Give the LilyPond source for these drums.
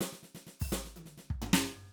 \new DrumStaff \drummode { \time 4/4 \tempo 4 = 125 sn16 sn16 sn16 sn16 sn16 <hho bd>16 <hhp sn>16 sn16 <tommh hh>16 sn16 sn16 bd16 tomfh16 sn8. | }